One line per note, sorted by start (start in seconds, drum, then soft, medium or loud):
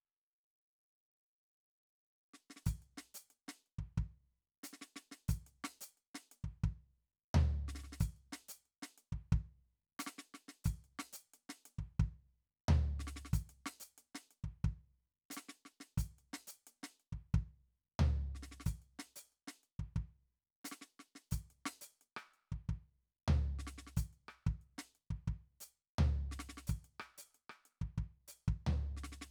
2.34 snare soft
2.50 snare soft
2.56 snare soft
2.66 kick medium
2.66 hi-hat pedal medium
2.82 open hi-hat soft
2.97 snare soft
3.14 hi-hat pedal medium
3.30 closed hi-hat soft
3.48 snare soft
3.66 closed hi-hat soft
3.78 kick soft
3.98 kick medium
4.63 snare soft
4.63 hi-hat pedal medium
4.73 snare soft
4.81 snare soft
4.96 snare soft
5.11 snare soft
5.28 kick medium
5.28 hi-hat pedal medium
5.47 closed hi-hat soft
5.64 snare medium
5.81 hi-hat pedal medium
5.97 closed hi-hat soft
6.15 snare soft
6.31 closed hi-hat soft
6.44 kick soft
6.64 kick medium
7.34 floor tom loud
7.68 snare soft
7.75 snare soft
7.78 snare soft
7.84 snare soft
7.92 snare soft
8.00 kick medium
8.00 hi-hat pedal medium
8.16 closed hi-hat soft
8.32 snare medium
8.48 hi-hat pedal medium
8.65 closed hi-hat soft
8.82 snare medium
8.98 closed hi-hat soft
9.12 kick soft
9.32 kick medium
9.99 snare medium
9.99 hi-hat pedal medium
10.07 snare medium
10.18 snare soft
10.34 snare soft
10.48 snare soft
10.64 kick medium
10.64 hi-hat pedal medium
10.84 closed hi-hat soft
10.99 snare medium
11.13 hi-hat pedal medium
11.34 closed hi-hat soft
11.49 snare soft
11.65 closed hi-hat soft
11.78 kick soft
11.99 kick medium
12.68 floor tom loud
12.99 snare soft
13.07 snare soft
13.16 snare soft
13.25 snare soft
13.33 kick medium
13.33 hi-hat pedal medium
13.49 closed hi-hat soft
13.66 snare medium
13.80 hi-hat pedal medium
13.98 closed hi-hat soft
14.15 snare medium
14.31 closed hi-hat soft
14.44 kick soft
14.64 kick medium
15.30 snare soft
15.30 hi-hat pedal medium
15.37 snare soft
15.49 snare soft
15.65 snare soft
15.80 snare soft
15.98 kick medium
15.98 hi-hat pedal medium
16.18 closed hi-hat soft
16.33 snare medium
16.47 hi-hat pedal medium
16.67 closed hi-hat soft
16.83 snare medium
17.00 closed hi-hat soft
17.12 kick soft
17.34 kick medium
17.99 floor tom loud
18.35 snare soft
18.43 snare soft
18.51 snare soft
18.60 snare soft
18.66 kick medium
18.66 hi-hat pedal medium
18.82 closed hi-hat soft
18.99 snare medium
19.16 hi-hat pedal medium
19.32 closed hi-hat soft
19.48 snare soft
19.63 closed hi-hat soft
19.79 kick soft
19.96 kick soft
20.64 snare soft
20.64 hi-hat pedal medium
20.72 snare soft
20.81 snare soft
20.99 snare soft
21.15 snare soft
21.31 kick soft
21.31 hi-hat pedal medium
21.50 closed hi-hat soft
21.66 snare medium
21.81 hi-hat pedal medium
22.01 closed hi-hat soft
22.17 cross-stick medium
22.34 closed hi-hat soft
22.52 kick soft
22.69 kick soft
23.28 floor tom loud
23.59 snare soft
23.67 snare soft
23.78 snare soft
23.87 snare soft
23.97 kick medium
23.97 hi-hat pedal medium
24.13 closed hi-hat soft
24.28 cross-stick medium
24.47 kick medium
24.61 closed hi-hat soft
24.78 snare medium
24.95 closed hi-hat soft
25.10 kick soft
25.28 kick soft
25.60 hi-hat pedal medium
25.98 floor tom loud
26.31 snare soft
26.39 snare soft
26.49 snare soft
26.57 snare soft
26.67 kick medium
26.67 hi-hat pedal medium
26.84 closed hi-hat soft
27.00 cross-stick medium
27.18 hi-hat pedal medium
27.34 closed hi-hat soft
27.49 cross-stick medium
27.65 closed hi-hat soft
27.81 kick soft
27.98 kick soft
28.28 hi-hat pedal medium
28.48 kick medium
28.67 floor tom loud
28.97 snare soft
29.04 snare soft
29.12 snare soft
29.21 snare soft